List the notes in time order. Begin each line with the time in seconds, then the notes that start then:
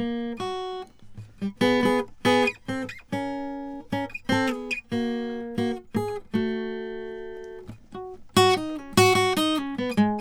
0.01 A#3
0.41 F#4
1.61 B3 G#4
1.83 B3 G#4
2.25 B3 G#4
2.69 C4 A4
3.13 C#4 A#4
3.93 C#4 A#4
4.30 C4 A4
4.48 B3 G#4
4.92 A#3 F#4
5.59 A#3 F#4
5.95 A#3 G#4
6.35 A3 F#4
7.96 F#4
8.37 F#4
8.58 D#4
8.77 C#4
8.98 F#4
9.13 F#4
9.38 D#4
9.57 C#4
9.79 B3
9.98 G#3